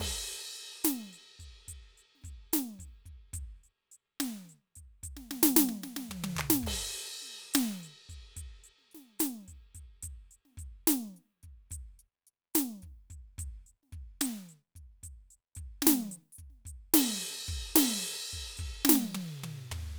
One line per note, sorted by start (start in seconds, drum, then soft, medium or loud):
0.01 kick soft
0.01 crash loud
0.07 kick soft
0.30 closed hi-hat soft
0.56 closed hi-hat soft
0.85 closed hi-hat loud
0.85 snare medium
1.14 closed hi-hat soft
1.40 closed hi-hat soft
1.40 kick soft
1.69 closed hi-hat medium
1.69 kick soft
1.98 closed hi-hat soft
2.16 snare soft
2.22 closed hi-hat soft
2.22 kick soft
2.22 snare soft
2.54 closed hi-hat medium
2.54 snare medium
2.80 closed hi-hat soft
2.80 kick soft
2.80 snare soft
3.06 kick soft
3.06 closed hi-hat soft
3.34 closed hi-hat medium
3.34 kick soft
3.40 kick soft
3.64 closed hi-hat soft
3.92 closed hi-hat soft
4.21 closed hi-hat medium
4.21 snare medium
4.46 closed hi-hat soft
4.46 snare soft
4.76 closed hi-hat medium
4.76 kick soft
5.04 closed hi-hat medium
5.04 kick soft
5.18 snare soft
5.32 snare medium
5.44 snare loud
5.57 snare loud
5.57 hi-hat pedal medium
5.70 snare soft
5.83 snare medium
5.83 hi-hat pedal soft
5.97 snare medium
6.10 kick soft
6.10 high tom medium
6.25 high tom loud
6.36 kick soft
6.36 percussion loud
6.51 snare loud
6.64 kick soft
6.64 crash loud
6.70 kick soft
6.98 open hi-hat soft
7.23 snare soft
7.23 closed hi-hat soft
7.55 closed hi-hat loud
7.55 snare loud
7.84 closed hi-hat soft
8.10 closed hi-hat soft
8.10 kick soft
8.37 closed hi-hat medium
8.37 kick soft
8.65 closed hi-hat soft
8.79 snare soft
8.92 snare soft
8.92 closed hi-hat soft
9.20 open hi-hat medium
9.20 snare medium
9.20 hi-hat pedal soft
9.43 snare soft
9.49 closed hi-hat soft
9.49 kick soft
9.76 closed hi-hat medium
9.76 kick soft
10.03 closed hi-hat medium
10.03 kick soft
10.32 closed hi-hat soft
10.46 snare soft
10.51 snare soft
10.54 kick soft
10.54 snare soft
10.60 closed hi-hat medium
10.88 closed hi-hat loud
10.88 snare loud
11.15 snare soft
11.15 closed hi-hat soft
11.44 kick soft
11.44 closed hi-hat soft
11.71 closed hi-hat medium
11.71 kick soft
11.71 hi-hat pedal soft
12.00 closed hi-hat soft
12.28 closed hi-hat soft
12.55 closed hi-hat loud
12.55 snare loud
12.55 hi-hat pedal soft
12.83 kick soft
12.83 closed hi-hat soft
13.11 closed hi-hat soft
13.11 kick soft
13.39 closed hi-hat medium
13.39 kick soft
13.45 kick soft
13.67 closed hi-hat soft
13.84 snare soft
13.90 kick soft
13.90 snare soft
13.90 closed hi-hat soft
14.22 closed hi-hat loud
14.22 snare medium
14.50 closed hi-hat soft
14.76 kick soft
14.76 closed hi-hat soft
15.04 closed hi-hat medium
15.04 kick soft
15.31 closed hi-hat soft
15.56 closed hi-hat medium
15.56 kick soft
15.83 snare medium
15.88 snare loud
15.94 snare soft
16.12 open hi-hat medium
16.33 hi-hat pedal medium
16.39 kick soft
16.39 closed hi-hat soft
16.51 snare soft
16.66 closed hi-hat medium
16.66 kick soft
16.95 snare loud
16.95 crash loud
17.04 snare soft
17.20 closed hi-hat soft
17.31 snare soft
17.48 kick soft
17.48 snare soft
17.48 closed hi-hat medium
17.55 kick soft
17.77 snare loud
17.77 crash loud
17.85 snare soft
18.03 closed hi-hat soft
18.15 snare soft
18.31 closed hi-hat medium
18.31 kick soft
18.58 closed hi-hat medium
18.58 kick soft
18.58 snare soft
18.66 kick soft
18.86 snare loud
18.90 snare loud
18.96 snare medium
19.11 hi-hat pedal soft
19.15 high tom loud
19.44 mid tom medium
19.72 floor tom medium